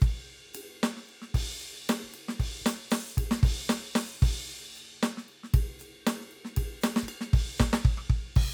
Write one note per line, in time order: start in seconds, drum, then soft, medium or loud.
0.01 kick loud
0.01 hi-hat pedal medium
0.01 ride medium
0.54 hi-hat pedal medium
0.54 ride loud
0.83 snare loud
0.83 ride medium
0.97 snare soft
1.05 hi-hat pedal soft
1.05 ride soft
1.22 snare soft
1.34 kick loud
1.34 ride loud
1.59 hi-hat pedal medium
1.59 ride soft
1.89 snare loud
1.89 ride loud
2.01 kick soft
2.01 snare soft
2.05 snare soft
2.09 snare soft
2.09 hi-hat pedal soft
2.12 snare soft
2.12 ride medium
2.28 snare medium
2.39 kick medium
2.39 ride loud
2.61 kick soft
2.61 hi-hat pedal soft
2.66 closed hi-hat loud
2.66 snare loud
2.91 open hi-hat loud
2.91 snare loud
3.15 kick medium
3.15 hi-hat pedal medium
3.15 ride loud
3.31 snare loud
3.43 kick loud
3.43 ride loud
3.69 open hi-hat loud
3.69 snare loud
3.69 hi-hat pedal medium
3.95 open hi-hat loud
3.95 snare loud
4.22 kick loud
4.22 ride loud
4.75 hi-hat pedal medium
5.03 snare loud
5.03 ride bell medium
5.17 snare medium
5.28 ride soft
5.43 snare soft
5.54 kick loud
5.54 ride loud
5.79 hi-hat pedal medium
5.79 ride medium
6.07 snare loud
6.07 ride loud
6.20 snare soft
6.31 ride soft
6.45 snare medium
6.57 kick medium
6.57 ride loud
6.81 snare loud
6.81 hi-hat pedal medium
6.81 ride loud
6.96 snare loud
7.03 kick soft
7.03 hi-hat pedal soft
7.08 ride bell loud
7.21 snare medium
7.33 kick loud
7.33 ride loud
7.57 kick loud
7.57 snare loud
7.57 hi-hat pedal medium
7.57 ride soft
7.73 snare loud
7.85 kick loud
7.85 ride medium
7.97 cross-stick medium
8.10 kick loud
8.33 kick soft
8.33 crash loud
8.36 kick loud
8.36 mid tom medium